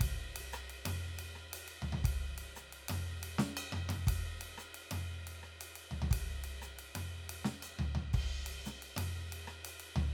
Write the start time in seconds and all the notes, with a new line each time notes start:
0.01 kick, ride
0.36 ride
0.53 cross-stick, hi-hat pedal
0.70 ride
0.86 mid tom, ride
1.19 ride
1.36 cross-stick
1.54 hi-hat pedal, ride
1.68 ride
1.82 floor tom
1.93 floor tom
2.05 kick, ride
2.38 ride
2.56 cross-stick, hi-hat pedal
2.73 ride
2.89 mid tom, ride
3.23 ride
3.39 snare
3.57 hi-hat pedal, ride bell
3.73 mid tom
3.89 mid tom, ride
4.07 kick, ride
4.41 ride
4.58 cross-stick, hi-hat pedal
4.75 ride
4.91 mid tom, ride
5.27 ride
5.43 cross-stick
5.61 hi-hat pedal, ride
5.76 ride
5.91 floor tom
6.02 floor tom
6.11 kick, ride
6.44 ride
6.62 cross-stick, hi-hat pedal
6.79 ride
6.96 mid tom, ride
7.30 ride
7.45 snare
7.63 hi-hat pedal, ride bell
7.79 floor tom
7.95 floor tom
8.14 kick, ride
8.47 ride
8.65 snare, hi-hat pedal
8.83 ride
8.97 mid tom, ride
9.33 ride
9.48 cross-stick
9.65 hi-hat pedal, ride
9.80 ride
9.96 floor tom